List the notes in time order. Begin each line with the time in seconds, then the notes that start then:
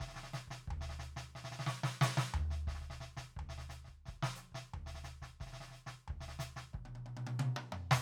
0.01 kick, snare
0.09 snare
0.15 snare
0.17 snare
0.24 snare
0.34 snare, hi-hat pedal
0.48 kick, snare
0.68 kick, floor tom
0.82 snare
0.90 snare
1.00 snare, hi-hat pedal
1.17 snare
1.36 snare
1.45 snare
1.52 snare
1.60 snare
1.67 snare
1.84 snare
2.02 snare
2.18 snare
2.35 floor tom
2.51 snare
2.68 kick, snare
2.75 snare
2.82 snare
2.91 snare
3.01 snare
3.18 kick, snare
3.37 kick, floor tom
3.50 snare
3.59 snare
3.70 snare, hi-hat pedal
3.85 kick, snare
4.06 kick, snare
4.23 snare
4.37 snare, hi-hat pedal
4.53 kick, snare
4.74 kick, floor tom
4.87 snare
4.96 snare
5.05 snare, hi-hat pedal
5.22 kick, snare
5.41 kick, snare
5.47 snare
5.52 snare
5.61 snare
5.69 snare
5.72 snare
5.76 hi-hat pedal
5.87 kick, snare
6.09 kick, floor tom
6.21 snare
6.29 snare
6.40 snare, hi-hat pedal
6.57 snare
6.74 kick, high tom
6.86 high tom
6.96 high tom
7.07 high tom
7.18 high tom
7.28 open hi-hat, high tom
7.40 high tom
7.57 high tom
7.73 mid tom
7.92 snare